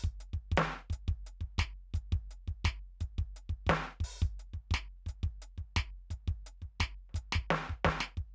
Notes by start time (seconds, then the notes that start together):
0.01 kick, hi-hat pedal
0.21 closed hi-hat
0.34 kick
0.52 kick
0.57 closed hi-hat, snare
0.90 kick, closed hi-hat
1.08 kick
1.27 closed hi-hat
1.41 kick
1.59 closed hi-hat, kick, snare
1.94 closed hi-hat, kick
2.13 kick
2.31 closed hi-hat
2.48 kick
2.65 closed hi-hat, kick, snare
3.01 closed hi-hat, kick
3.19 kick
3.37 closed hi-hat
3.50 kick
3.67 closed hi-hat, kick, snare
4.01 open hi-hat, kick
4.19 kick, hi-hat pedal
4.40 closed hi-hat
4.54 kick
4.71 closed hi-hat, kick, snare
5.07 closed hi-hat, kick
5.24 kick
5.42 closed hi-hat
5.58 kick
5.77 closed hi-hat, kick, snare
6.11 kick, closed hi-hat
6.28 kick
6.47 closed hi-hat
6.62 kick
6.80 kick, snare, closed hi-hat
7.10 snare
7.15 closed hi-hat, kick
7.33 kick, snare
7.51 snare
7.70 kick
7.85 kick, snare
8.01 snare
8.18 kick